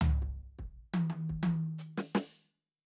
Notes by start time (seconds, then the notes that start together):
0.01 floor tom
0.22 kick
0.59 kick
0.94 high tom
1.10 high tom
1.29 kick
1.43 high tom
1.79 hi-hat pedal
1.97 snare
2.15 snare